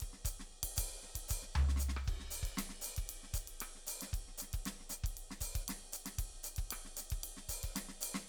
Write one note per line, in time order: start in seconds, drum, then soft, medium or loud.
0.01 kick soft
0.01 ride medium
0.14 snare soft
0.25 kick soft
0.25 hi-hat pedal loud
0.25 ride medium
0.40 snare soft
0.56 snare soft
0.64 kick soft
0.64 ride loud
0.77 kick soft
0.77 hi-hat pedal medium
0.77 ride loud
1.03 snare soft
1.16 kick soft
1.16 ride medium
1.29 kick soft
1.29 hi-hat pedal loud
1.29 ride medium
1.43 snare soft
1.54 floor tom loud
1.54 hi-hat pedal soft
1.69 snare soft
1.77 snare soft
1.77 hi-hat pedal loud
1.83 snare soft
1.89 snare soft
1.97 cross-stick medium
2.05 kick medium
2.05 hi-hat pedal soft
2.09 ride medium
2.20 snare soft
2.31 hi-hat pedal medium
2.31 ride medium
2.43 kick soft
2.43 ride medium
2.56 snare medium
2.56 hi-hat pedal soft
2.56 ride medium
2.70 snare soft
2.82 hi-hat pedal loud
2.82 ride medium
2.87 snare soft
2.97 kick soft
2.97 ride medium
3.08 hi-hat pedal soft
3.08 ride medium
3.24 snare soft
3.34 kick soft
3.34 hi-hat pedal medium
3.34 ride medium
3.48 ride medium
3.61 cross-stick medium
3.61 ride medium
3.76 snare soft
3.87 hi-hat pedal loud
3.87 ride medium
4.02 snare soft
4.02 ride medium
4.14 kick soft
4.14 ride medium
4.28 snare soft
4.38 snare soft
4.38 hi-hat pedal loud
4.38 ride medium
4.54 kick soft
4.54 ride medium
4.66 snare medium
4.66 ride medium
4.80 snare soft
4.90 snare soft
4.90 hi-hat pedal loud
5.04 kick medium
5.04 ride medium
5.18 ride medium
5.31 snare soft
5.41 kick soft
5.41 hi-hat pedal medium
5.41 ride medium
5.56 kick soft
5.56 ride medium
5.69 snare medium
5.69 ride loud
5.81 snare soft
5.93 hi-hat pedal medium
5.93 ride medium
6.06 snare soft
6.06 ride medium
6.19 kick soft
6.19 ride medium
6.34 snare soft
6.44 snare soft
6.44 hi-hat pedal medium
6.44 ride medium
6.57 kick soft
6.57 ride medium
6.71 cross-stick medium
6.71 ride loud
6.85 snare soft
6.97 snare soft
6.97 hi-hat pedal medium
6.97 ride medium
7.11 kick soft
7.11 ride medium
7.24 ride medium
7.37 snare soft
7.49 kick soft
7.49 hi-hat pedal loud
7.49 ride medium
7.64 kick soft
7.64 ride medium
7.76 snare medium
7.76 ride medium
7.89 snare soft
8.02 hi-hat pedal loud
8.02 ride loud
8.15 snare medium